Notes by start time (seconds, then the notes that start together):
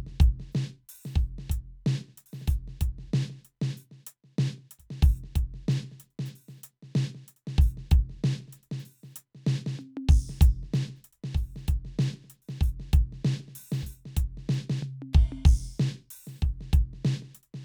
0.07 snare
0.20 closed hi-hat, kick
0.40 snare
0.52 snare, hi-hat pedal
0.89 open hi-hat
1.06 snare
1.16 kick, hi-hat pedal
1.39 snare
1.50 closed hi-hat, kick
1.86 snare
2.01 snare
2.09 snare
2.18 closed hi-hat
2.26 open hi-hat
2.33 snare
2.42 snare
2.48 kick, open hi-hat
2.52 hi-hat pedal
2.68 snare
2.81 closed hi-hat, kick
2.99 snare
3.03 kick
3.14 snare
3.30 snare
3.45 closed hi-hat
3.62 snare
3.78 open hi-hat
3.92 snare
4.07 closed hi-hat
4.24 snare
4.39 snare
4.58 snare
4.63 snare
4.71 closed hi-hat
4.79 kick, closed hi-hat
4.91 snare
5.03 kick, open hi-hat
5.17 hi-hat pedal
5.24 snare
5.36 kick, closed hi-hat
5.54 snare
5.69 snare, hi-hat pedal
5.84 snare
5.92 snare
6.00 closed hi-hat
6.11 closed hi-hat
6.19 snare
6.26 hi-hat pedal
6.36 open hi-hat
6.49 snare
6.59 snare, hi-hat pedal
6.64 closed hi-hat
6.83 snare
6.96 snare
7.15 snare
7.28 closed hi-hat
7.37 closed hi-hat
7.47 snare
7.58 kick, open hi-hat
7.71 hi-hat pedal
7.78 snare
7.91 kick, closed hi-hat
8.10 snare
8.24 snare
8.41 snare
8.48 snare
8.53 closed hi-hat
8.63 open hi-hat
8.72 snare
8.79 hi-hat pedal
8.86 open hi-hat
9.04 snare
9.11 hi-hat pedal
9.16 closed hi-hat
9.35 snare
9.47 snare
9.67 snare
9.79 hi-hat pedal, high tom
9.97 high tom
10.09 kick, crash
10.30 snare
10.41 kick, closed hi-hat
10.63 snare
10.74 snare, hi-hat pedal
10.89 snare
10.96 hi-hat pedal
11.04 closed hi-hat
11.13 closed hi-hat
11.24 snare
11.35 kick, open hi-hat
11.56 snare
11.68 kick, closed hi-hat
11.85 snare
11.99 snare, hi-hat pedal
12.14 snare
12.24 snare
12.30 closed hi-hat
12.42 open hi-hat
12.49 snare
12.61 kick, open hi-hat
12.68 hi-hat pedal
12.80 snare
12.93 kick, closed hi-hat
13.13 snare
13.25 snare
13.40 snare
13.48 snare
13.56 open hi-hat
13.65 open hi-hat
13.72 snare
13.83 kick
13.87 open hi-hat
13.93 hi-hat pedal
14.06 snare
14.17 closed hi-hat, kick
14.38 snare
14.49 snare
14.53 hi-hat pedal
14.70 snare
14.77 hi-hat pedal
14.83 floor tom
15.02 high tom
15.14 kick, ride
15.32 high tom
15.45 kick, crash
15.80 snare, hi-hat pedal
15.88 snare
16.11 open hi-hat
16.27 snare
16.42 kick, closed hi-hat
16.61 snare
16.73 closed hi-hat, kick
16.94 snare
17.05 snare
17.23 snare
17.35 closed hi-hat
17.43 open hi-hat
17.54 snare